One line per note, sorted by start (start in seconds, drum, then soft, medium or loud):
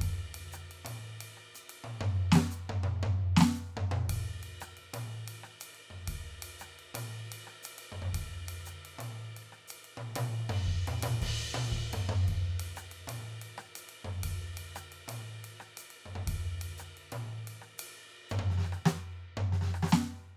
0.01 kick medium
0.01 ride loud
0.35 ride loud
0.52 cross-stick medium
0.52 hi-hat pedal medium
0.72 ride medium
0.85 mid tom medium
0.85 ride loud
1.21 ride loud
1.37 cross-stick soft
1.55 hi-hat pedal medium
1.55 ride bell medium
1.70 ride medium
1.84 mid tom medium
2.01 floor tom loud
2.32 snare loud
2.36 snare loud
2.51 hi-hat pedal medium
2.70 floor tom loud
2.84 mid tom medium
3.03 floor tom loud
3.37 snare loud
3.41 snare loud
3.56 hi-hat pedal soft
3.77 floor tom loud
3.92 mid tom loud
4.09 kick medium
4.09 ride loud
4.43 ride medium
4.61 cross-stick medium
4.61 hi-hat pedal medium
4.77 ride medium
4.94 mid tom medium
4.94 ride loud
5.28 ride medium
5.44 cross-stick medium
5.61 hi-hat pedal medium
5.61 ride loud
5.75 ride soft
5.91 floor tom medium
6.08 kick medium
6.08 ride loud
6.43 ride loud
6.60 cross-stick medium
6.60 hi-hat pedal medium
6.79 ride soft
6.95 mid tom medium
6.95 ride loud
7.32 ride loud
7.47 cross-stick medium
7.63 hi-hat pedal medium
7.63 ride loud
7.79 ride medium
7.92 floor tom medium
8.02 floor tom medium
8.14 kick medium
8.14 ride loud
8.49 ride loud
8.66 cross-stick soft
8.66 hi-hat pedal medium
8.85 ride medium
8.99 mid tom medium
8.99 ride medium
9.37 ride medium
9.53 cross-stick soft
9.68 hi-hat pedal medium
9.68 ride loud
9.85 ride medium
9.98 mid tom medium
10.16 mid tom loud
10.16 ride loud
10.50 floor tom loud
10.50 ride medium
10.67 kick medium
10.88 mid tom loud
10.88 ride medium
11.03 mid tom loud
11.03 ride loud
11.22 kick medium
11.22 ride loud
11.55 mid tom loud
11.55 ride soft
11.72 kick medium
11.93 floor tom loud
11.93 ride medium
12.09 floor tom loud
12.28 kick medium
12.28 ride medium
12.60 ride loud
12.77 cross-stick medium
12.77 hi-hat pedal medium
12.92 ride medium
13.08 mid tom medium
13.08 ride loud
13.42 ride medium
13.58 cross-stick medium
13.76 hi-hat pedal medium
13.76 ride loud
13.89 ride medium
14.05 floor tom medium
14.24 kick medium
14.24 ride loud
14.41 ride soft
14.58 ride medium
14.74 cross-stick medium
14.74 hi-hat pedal medium
14.74 ride soft
14.92 ride medium
15.08 mid tom medium
15.08 ride loud
15.45 ride medium
15.60 cross-stick medium
15.78 hi-hat pedal medium
15.78 ride medium
15.91 ride medium
16.06 kick soft
16.06 floor tom medium
16.16 floor tom medium
16.27 kick medium
16.27 ride loud
16.62 ride loud
16.78 cross-stick medium
16.78 hi-hat pedal medium
16.97 ride medium
17.13 mid tom medium
17.13 ride medium
17.48 ride medium
17.62 cross-stick medium
17.78 hi-hat pedal medium
17.78 ride loud
17.97 ride soft
18.08 ride soft
18.30 floor tom loud
18.30 hi-hat pedal soft
18.39 floor tom loud
18.51 snare soft
18.58 snare medium
18.61 snare medium
18.63 cross-stick medium
18.63 snare soft
18.73 cross-stick medium
18.76 cross-stick soft
18.86 snare loud
18.86 hi-hat pedal medium
19.38 floor tom loud
19.53 snare medium
19.62 snare medium
19.65 snare medium
19.68 snare soft
19.75 cross-stick medium
19.77 cross-stick soft
19.83 snare medium
19.87 cross-stick medium
19.87 hi-hat pedal medium
19.89 cross-stick medium
19.89 snare loud